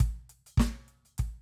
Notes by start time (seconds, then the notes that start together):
0.01 kick, closed hi-hat
0.30 closed hi-hat
0.47 closed hi-hat
0.58 kick, snare
0.88 closed hi-hat
1.05 closed hi-hat
1.18 kick, closed hi-hat